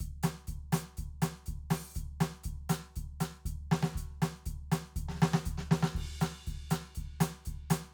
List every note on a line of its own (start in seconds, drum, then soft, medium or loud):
0.00 closed hi-hat soft
0.00 kick medium
0.23 closed hi-hat medium
0.23 snare loud
0.47 closed hi-hat soft
0.47 kick medium
0.72 open hi-hat loud
0.72 snare loud
0.72 hi-hat pedal soft
0.97 closed hi-hat medium
0.97 kick medium
1.22 closed hi-hat medium
1.22 snare loud
1.46 closed hi-hat medium
1.46 kick medium
1.70 open hi-hat medium
1.70 snare loud
1.95 closed hi-hat medium
1.95 kick medium
1.95 hi-hat pedal medium
2.21 closed hi-hat medium
2.21 snare loud
2.44 closed hi-hat medium
2.44 kick medium
2.69 closed hi-hat medium
2.69 snare loud
2.96 closed hi-hat soft
2.96 kick medium
3.21 closed hi-hat medium
3.21 snare medium
3.46 closed hi-hat medium
3.46 kick medium
3.72 snare loud
3.83 snare loud
3.96 closed hi-hat medium
3.96 kick medium
4.22 closed hi-hat medium
4.22 snare loud
4.46 closed hi-hat medium
4.46 kick medium
4.72 closed hi-hat medium
4.72 snare loud
4.96 closed hi-hat medium
4.96 kick medium
5.09 snare medium
5.14 snare soft
5.20 snare loud
5.20 hi-hat pedal soft
5.34 snare loud
5.46 closed hi-hat medium
5.46 kick medium
5.58 snare medium
5.71 snare loud
5.83 snare loud
5.95 kick medium
5.95 crash medium
6.21 closed hi-hat medium
6.21 snare loud
6.47 closed hi-hat soft
6.47 kick medium
6.71 closed hi-hat medium
6.71 snare loud
6.95 closed hi-hat soft
6.95 kick medium
7.21 closed hi-hat medium
7.21 snare loud
7.45 closed hi-hat soft
7.45 kick medium
7.70 closed hi-hat loud
7.70 snare loud